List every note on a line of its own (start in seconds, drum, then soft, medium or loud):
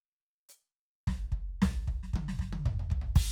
0.49 hi-hat pedal medium
1.07 kick medium
1.07 snare medium
1.07 floor tom medium
1.32 kick medium
1.32 floor tom soft
1.62 kick medium
1.62 snare loud
1.62 floor tom loud
1.88 kick medium
1.88 floor tom medium
2.03 snare soft
2.14 kick medium
2.14 high tom loud
2.28 snare medium
2.39 kick medium
2.39 snare medium
2.53 high tom loud
2.66 kick medium
2.66 mid tom loud
2.80 mid tom medium
2.90 kick medium
2.90 floor tom medium
3.02 mid tom medium
3.16 kick loud
3.16 crash loud